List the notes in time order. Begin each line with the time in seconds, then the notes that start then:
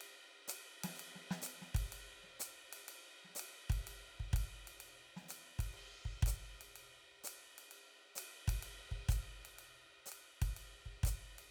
0.01 ride
0.48 hi-hat pedal, ride
0.84 snare, ride
0.95 hi-hat pedal
1.00 ride
1.16 snare
1.31 snare
1.42 hi-hat pedal
1.47 ride
1.62 snare
1.75 kick, ride
1.85 hi-hat pedal
1.92 ride
2.23 snare
2.40 hi-hat pedal, ride
2.73 ride
2.88 ride
3.25 snare
3.29 snare
3.35 hi-hat pedal
3.40 ride
3.70 kick, ride
3.87 ride
4.20 kick
4.33 kick, ride
4.67 ride
4.80 ride
5.17 snare
5.22 snare
5.25 snare, hi-hat pedal
5.31 ride
5.59 kick, ride
5.73 ride
6.05 kick
6.23 kick, ride
6.27 hi-hat pedal
6.61 ride
6.76 ride
7.24 hi-hat pedal, ride
7.58 ride
7.71 ride
8.16 hi-hat pedal, ride
8.48 kick, ride
8.63 ride
8.91 kick
9.09 kick, hi-hat pedal, ride
9.45 ride
9.59 ride
10.06 hi-hat pedal
10.12 ride
10.42 kick, ride
10.57 ride
10.86 kick
11.03 kick, hi-hat pedal, ride
11.39 ride